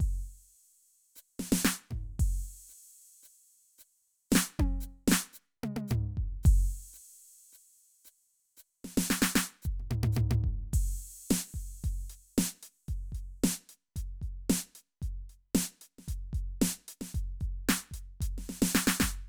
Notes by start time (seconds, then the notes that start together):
0.01 kick, crash
1.16 hi-hat pedal
1.40 snare
1.53 snare
1.65 snare
1.91 kick, floor tom
2.20 kick, crash
2.69 hi-hat pedal
3.23 hi-hat pedal
3.79 hi-hat pedal
4.31 snare, hi-hat pedal
4.36 snare
4.60 kick, high tom
4.81 hi-hat pedal
5.08 snare
5.12 snare
5.34 hi-hat pedal
5.64 mid tom
5.77 mid tom
5.89 floor tom, hi-hat pedal
6.18 kick
6.44 kick, hi-hat pedal, crash
6.94 hi-hat pedal
7.53 hi-hat pedal
8.05 hi-hat pedal
8.58 hi-hat pedal
8.85 snare
8.98 snare
9.10 snare, hi-hat pedal
9.23 snare
9.36 snare
9.63 kick, hi-hat pedal
9.80 floor tom
9.92 floor tom
10.04 floor tom
10.13 hi-hat pedal
10.17 floor tom
10.31 floor tom
10.45 kick
10.74 kick, hi-hat pedal, crash
11.31 closed hi-hat, snare
11.55 closed hi-hat, kick
11.85 closed hi-hat, kick
12.10 closed hi-hat
12.39 snare
12.64 closed hi-hat
12.89 closed hi-hat, kick
13.13 closed hi-hat, kick
13.44 snare
13.70 closed hi-hat
13.97 closed hi-hat, kick
14.22 closed hi-hat, kick
14.50 snare
14.76 closed hi-hat
15.03 closed hi-hat, kick
15.30 closed hi-hat
15.55 snare
15.82 closed hi-hat
15.99 snare
16.09 closed hi-hat, kick
16.34 closed hi-hat, kick
16.62 snare
16.89 closed hi-hat
17.02 snare
17.15 closed hi-hat, kick
17.41 kick, closed hi-hat
17.69 snare
17.92 closed hi-hat, kick
18.21 closed hi-hat, kick
18.39 snare
18.50 snare
18.63 snare
18.72 snare, hi-hat pedal
18.88 snare
19.01 kick, snare